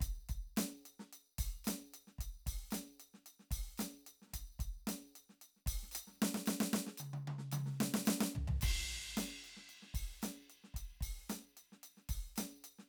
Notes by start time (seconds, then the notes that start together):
0.01 kick, closed hi-hat
0.29 kick, percussion
0.57 snare, closed hi-hat, hi-hat pedal
0.86 closed hi-hat
1.00 snare
1.13 closed hi-hat
1.39 kick, percussion
1.65 snare, closed hi-hat, hi-hat pedal
1.94 closed hi-hat
2.07 snare
2.19 kick, closed hi-hat
2.47 kick, percussion
2.71 snare, closed hi-hat, hi-hat pedal
3.00 closed hi-hat
3.14 snare
3.26 closed hi-hat
3.40 snare
3.51 kick, percussion
3.78 snare, closed hi-hat, hi-hat pedal
4.07 closed hi-hat
4.22 snare
4.27 snare
4.30 kick, snare
4.34 snare, closed hi-hat
4.60 kick, closed hi-hat
4.87 snare, closed hi-hat
5.16 closed hi-hat
5.30 snare
5.42 closed hi-hat
5.57 snare
5.67 kick, percussion
5.83 snare
5.92 closed hi-hat, hi-hat pedal
6.07 snare
6.12 snare
6.17 snare
6.22 snare
6.35 snare
6.46 snare, hi-hat pedal
6.61 snare
6.74 snare
6.87 snare
6.98 hi-hat pedal, high tom
7.14 high tom
7.28 high tom
7.39 snare
7.52 hi-hat pedal, high tom
7.66 snare
7.71 snare
7.75 snare
7.81 snare
7.94 snare
8.06 snare, hi-hat pedal
8.21 snare
8.35 floor tom
8.48 floor tom
8.61 kick, hi-hat pedal, ride
9.17 snare, closed hi-hat
9.44 closed hi-hat
9.57 snare
9.69 closed hi-hat
9.83 snare
9.94 kick, percussion
10.22 snare, closed hi-hat, hi-hat pedal
10.50 closed hi-hat
10.64 snare
10.74 kick, closed hi-hat
11.01 kick, percussion
11.30 snare, closed hi-hat, hi-hat pedal
11.57 closed hi-hat
11.72 snare
11.83 closed hi-hat
11.97 snare
12.09 kick, percussion
12.36 snare, closed hi-hat, hi-hat pedal
12.64 closed hi-hat
12.79 snare